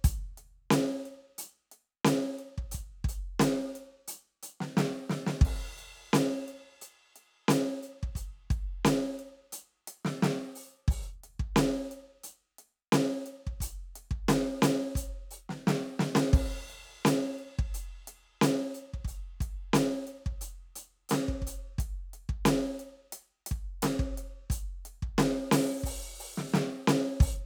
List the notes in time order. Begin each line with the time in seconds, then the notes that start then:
0.05 closed hi-hat, kick
0.38 closed hi-hat
0.71 closed hi-hat, snare
1.06 closed hi-hat
1.39 closed hi-hat
1.72 closed hi-hat
2.05 closed hi-hat, snare
2.39 closed hi-hat
2.58 kick
2.72 closed hi-hat, kick
3.05 kick, snare
3.09 closed hi-hat
3.40 closed hi-hat, snare
3.76 closed hi-hat
4.08 closed hi-hat
4.43 closed hi-hat
4.61 snare
4.77 snare
5.10 snare
5.27 snare
5.42 kick, snare, crash
5.78 closed hi-hat
6.14 closed hi-hat, snare
6.49 closed hi-hat
6.82 closed hi-hat
7.16 closed hi-hat
7.49 closed hi-hat, snare
7.83 closed hi-hat
8.03 kick
8.16 closed hi-hat, kick
8.51 kick, closed hi-hat
8.85 closed hi-hat, snare
9.20 closed hi-hat
9.53 closed hi-hat
9.88 closed hi-hat
10.05 snare
10.23 snare
10.56 open hi-hat
10.88 open hi-hat, kick
11.24 closed hi-hat
11.40 kick
11.57 closed hi-hat, snare
11.92 closed hi-hat
12.24 closed hi-hat
12.59 closed hi-hat
12.93 snare, closed hi-hat
13.26 closed hi-hat
13.47 kick
13.61 closed hi-hat, kick
13.96 closed hi-hat
14.11 kick
14.29 closed hi-hat, snare
14.63 closed hi-hat, snare
14.96 closed hi-hat, kick
15.31 open hi-hat
15.50 snare
15.68 snare
16.00 snare
16.16 snare
16.34 kick, crash
16.70 closed hi-hat
17.06 closed hi-hat, snare
17.39 closed hi-hat
17.59 kick, snare
17.75 closed hi-hat
18.08 closed hi-hat
18.42 closed hi-hat, snare
18.75 closed hi-hat
18.94 kick
19.05 open hi-hat, kick
19.41 kick, closed hi-hat
19.74 closed hi-hat, snare
20.08 closed hi-hat
20.27 kick
20.42 closed hi-hat
20.76 closed hi-hat
21.10 closed hi-hat, snare
21.29 kick
21.42 kick
21.47 closed hi-hat
21.79 kick, closed hi-hat
22.14 closed hi-hat
22.30 kick
22.46 snare, closed hi-hat
22.80 closed hi-hat
23.13 closed hi-hat
23.47 closed hi-hat
23.52 kick
23.83 snare, closed hi-hat
24.00 kick
24.18 closed hi-hat
24.50 closed hi-hat, kick
24.86 closed hi-hat
25.03 kick
25.19 snare, closed hi-hat
25.52 snare, open hi-hat
25.84 open hi-hat, kick
26.20 open hi-hat
26.38 snare
26.54 snare
26.88 snare
27.21 open hi-hat, kick